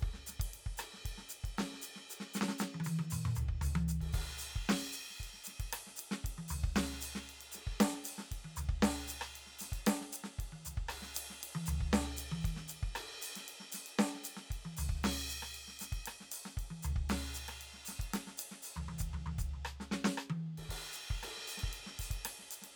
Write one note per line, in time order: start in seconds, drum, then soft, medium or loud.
0.01 kick medium
0.01 ride medium
0.14 snare soft
0.27 snare soft
0.27 hi-hat pedal loud
0.40 kick medium
0.40 ride medium
0.54 ride medium
0.66 kick soft
0.78 cross-stick medium
0.78 hi-hat pedal medium
0.78 ride medium
0.94 snare soft
1.05 kick soft
1.05 ride medium
1.18 snare soft
1.29 hi-hat pedal medium
1.29 ride medium
1.44 kick soft
1.44 ride soft
1.58 snare medium
1.58 ride medium
1.74 snare soft
1.82 hi-hat pedal medium
1.82 ride medium
1.96 snare soft
2.10 hi-hat pedal medium
2.10 ride medium
2.20 snare soft
2.34 snare medium
2.34 hi-hat pedal loud
2.41 snare medium
2.49 snare medium
2.59 snare medium
2.59 hi-hat pedal loud
2.75 high tom medium
2.80 hi-hat pedal medium
2.80 high tom medium
2.87 high tom medium
2.99 high tom medium
3.11 hi-hat pedal loud
3.11 mid tom medium
3.25 mid tom loud
3.36 floor tom medium
3.36 hi-hat pedal medium
3.49 kick soft
3.62 floor tom loud
3.62 hi-hat pedal medium
3.76 high tom loud
3.88 hi-hat pedal medium
4.01 kick soft
4.01 ride medium
4.13 kick medium
4.13 hi-hat pedal medium
4.13 crash medium
4.38 hi-hat pedal medium
4.56 kick soft
4.69 snare loud
4.69 crash medium
4.92 hi-hat pedal medium
5.11 snare soft
5.17 kick soft
5.17 hi-hat pedal soft
5.23 ride medium
5.34 snare soft
5.44 snare soft
5.44 hi-hat pedal medium
5.44 ride medium
5.60 kick soft
5.60 ride medium
5.69 hi-hat pedal soft
5.73 cross-stick medium
5.73 ride loud
5.87 snare soft
5.97 hi-hat pedal medium
5.97 ride medium
6.12 snare medium
6.25 kick soft
6.25 ride medium
6.38 high tom medium
6.48 floor tom medium
6.48 hi-hat pedal medium
6.64 kick medium
6.73 kick soft
6.73 snare loud
6.73 crash medium
6.83 snare soft
6.93 snare soft
7.01 hi-hat pedal medium
7.01 ride medium
7.15 snare medium
7.21 snare soft
7.29 ride soft
7.41 ride medium
7.52 snare soft
7.52 hi-hat pedal medium
7.52 ride medium
7.67 kick soft
7.80 snare loud
7.80 ride loud
7.93 snare soft
8.05 hi-hat pedal medium
8.05 ride medium
8.18 snare soft
8.32 kick soft
8.32 ride medium
8.45 high tom soft
8.56 floor tom medium
8.56 hi-hat pedal medium
8.69 kick medium
8.83 snare loud
8.83 crash medium
9.00 snare soft
9.08 hi-hat pedal medium
9.08 ride medium
9.21 cross-stick medium
9.36 ride medium
9.47 snare soft
9.59 snare soft
9.59 hi-hat pedal medium
9.59 ride medium
9.72 kick soft
9.72 ride medium
9.87 snare medium
9.87 ride loud
10.01 snare soft
10.13 hi-hat pedal loud
10.13 ride medium
10.24 snare soft
10.39 kick soft
10.39 ride medium
10.52 high tom soft
10.65 floor tom soft
10.65 hi-hat pedal loud
10.77 kick soft
10.89 cross-stick medium
10.89 crash medium
11.02 snare soft
11.15 hi-hat pedal loud
11.15 ride loud
11.30 snare soft
11.43 ride loud
11.55 high tom medium
11.66 floor tom medium
11.66 hi-hat pedal loud
11.81 kick soft
11.93 snare medium
11.93 ride medium
12.04 snare soft
12.08 snare soft
12.17 hi-hat pedal medium
12.17 ride medium
12.32 high tom medium
12.42 kick medium
12.42 hi-hat pedal soft
12.46 ride medium
12.57 snare soft
12.68 hi-hat pedal medium
12.68 ride medium
12.83 kick medium
12.95 cross-stick medium
12.95 ride loud
13.22 hi-hat pedal loud
13.22 ride medium
13.36 snare soft
13.36 ride medium
13.48 ride medium
13.60 snare soft
13.72 snare soft
13.72 hi-hat pedal loud
13.72 ride medium
13.86 ride medium
13.99 snare medium
13.99 ride medium
14.15 snare soft
14.24 hi-hat pedal loud
14.24 ride medium
14.37 snare soft
14.51 kick soft
14.51 ride medium
14.65 high tom medium
14.77 floor tom medium
14.77 hi-hat pedal loud
14.89 kick medium
15.04 snare medium
15.04 crash loud
15.30 hi-hat pedal medium
15.30 ride soft
15.43 cross-stick medium
15.55 ride medium
15.68 snare soft
15.80 snare soft
15.80 hi-hat pedal loud
15.80 ride medium
15.92 kick soft
15.92 ride soft
16.05 cross-stick medium
16.05 hi-hat pedal soft
16.05 ride medium
16.21 snare soft
16.32 hi-hat pedal loud
16.32 ride medium
16.46 snare soft
16.57 kick soft
16.57 ride medium
16.71 high tom medium
16.83 floor tom medium
16.83 hi-hat pedal medium
16.96 kick medium
17.10 snare medium
17.10 crash medium
17.34 hi-hat pedal medium
17.34 ride soft
17.48 cross-stick medium
17.48 ride medium
17.61 ride medium
17.74 snare soft
17.85 snare soft
17.85 hi-hat pedal medium
17.85 ride medium
18.00 kick soft
18.00 ride medium
18.14 snare medium
18.14 ride medium
18.27 snare soft
18.38 hi-hat pedal medium
18.38 ride loud
18.52 snare soft
18.63 hi-hat pedal medium
18.63 ride soft
18.76 floor tom medium
18.76 high tom medium
18.89 floor tom medium
18.89 high tom medium
18.99 kick soft
18.99 hi-hat pedal loud
19.13 floor tom medium
19.13 high tom medium
19.26 floor tom medium
19.26 high tom medium
19.39 kick medium
19.39 hi-hat pedal medium
19.54 floor tom soft
19.65 cross-stick medium
19.80 snare soft
19.92 snare medium
20.05 snare loud
20.18 cross-stick medium
20.30 high tom medium
20.58 kick soft
20.58 ride medium
20.70 kick soft
20.70 crash medium
20.93 hi-hat pedal medium
21.11 kick medium
21.23 cross-stick medium
21.23 ride loud
21.37 snare soft
21.48 hi-hat pedal medium
21.48 ride medium
21.58 snare soft
21.58 ride medium
21.64 kick soft
21.73 ride medium
21.87 snare soft
21.99 kick soft
21.99 hi-hat pedal medium
21.99 ride medium
22.11 kick soft
22.11 ride medium
22.25 cross-stick medium
22.25 ride loud
22.39 snare soft
22.51 hi-hat pedal medium
22.51 ride medium
22.62 snare soft
22.62 ride medium